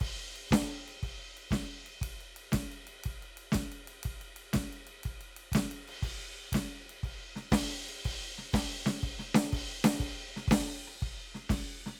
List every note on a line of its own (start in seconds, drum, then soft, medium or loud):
0.01 kick medium
0.01 ride loud
0.36 ride medium
0.49 kick medium
0.49 snare loud
0.49 hi-hat pedal soft
0.53 ride medium
0.88 ride medium
1.03 kick soft
1.03 ride medium
1.38 ride medium
1.49 kick medium
1.49 snare loud
1.49 hi-hat pedal soft
1.49 ride medium
1.87 ride medium
2.02 kick medium
2.02 ride loud
2.21 ride soft
2.37 ride medium
2.52 kick medium
2.52 snare loud
2.52 hi-hat pedal soft
2.52 ride loud
2.72 ride medium
2.88 ride medium
3.04 kick medium
3.04 ride loud
3.23 ride soft
3.38 ride medium
3.52 kick medium
3.52 snare loud
3.52 hi-hat pedal soft
3.52 ride loud
3.72 ride medium
3.88 ride medium
4.04 kick medium
4.04 ride loud
4.22 ride medium
4.37 ride medium
4.54 kick soft
4.54 snare loud
4.54 hi-hat pedal soft
4.54 ride loud
4.73 ride medium
4.87 ride medium
5.04 kick soft
5.04 ride medium
5.21 ride medium
5.37 ride medium
5.52 kick soft
5.52 snare loud
5.52 hi-hat pedal soft
5.52 ride loud
5.72 ride medium
5.88 ride medium
6.03 kick medium
6.03 crash medium
6.52 kick medium
6.52 snare loud
6.52 hi-hat pedal soft
6.52 ride loud
6.90 ride medium
7.04 kick medium
7.04 ride medium
7.36 snare medium
7.50 kick medium
7.50 snare loud
7.50 hi-hat pedal soft
7.50 ride loud
7.89 ride medium
8.05 kick medium
8.05 ride loud
8.38 snare soft
8.53 kick medium
8.53 snare loud
8.53 hi-hat pedal medium
8.53 ride loud
8.86 snare loud
9.03 kick medium
9.03 ride medium
9.19 snare soft
9.35 snare loud
9.53 kick medium
9.53 hi-hat pedal soft
9.53 ride loud
9.85 snare loud
9.85 ride loud
10.00 kick medium
10.00 ride medium
10.37 snare medium
10.48 kick medium
10.48 snare loud
10.48 hi-hat pedal medium
10.48 crash medium
10.88 cross-stick soft
11.01 kick medium
11.01 ride medium
11.35 snare soft
11.50 kick medium
11.50 snare loud
11.50 hi-hat pedal medium
11.50 crash medium
11.86 snare medium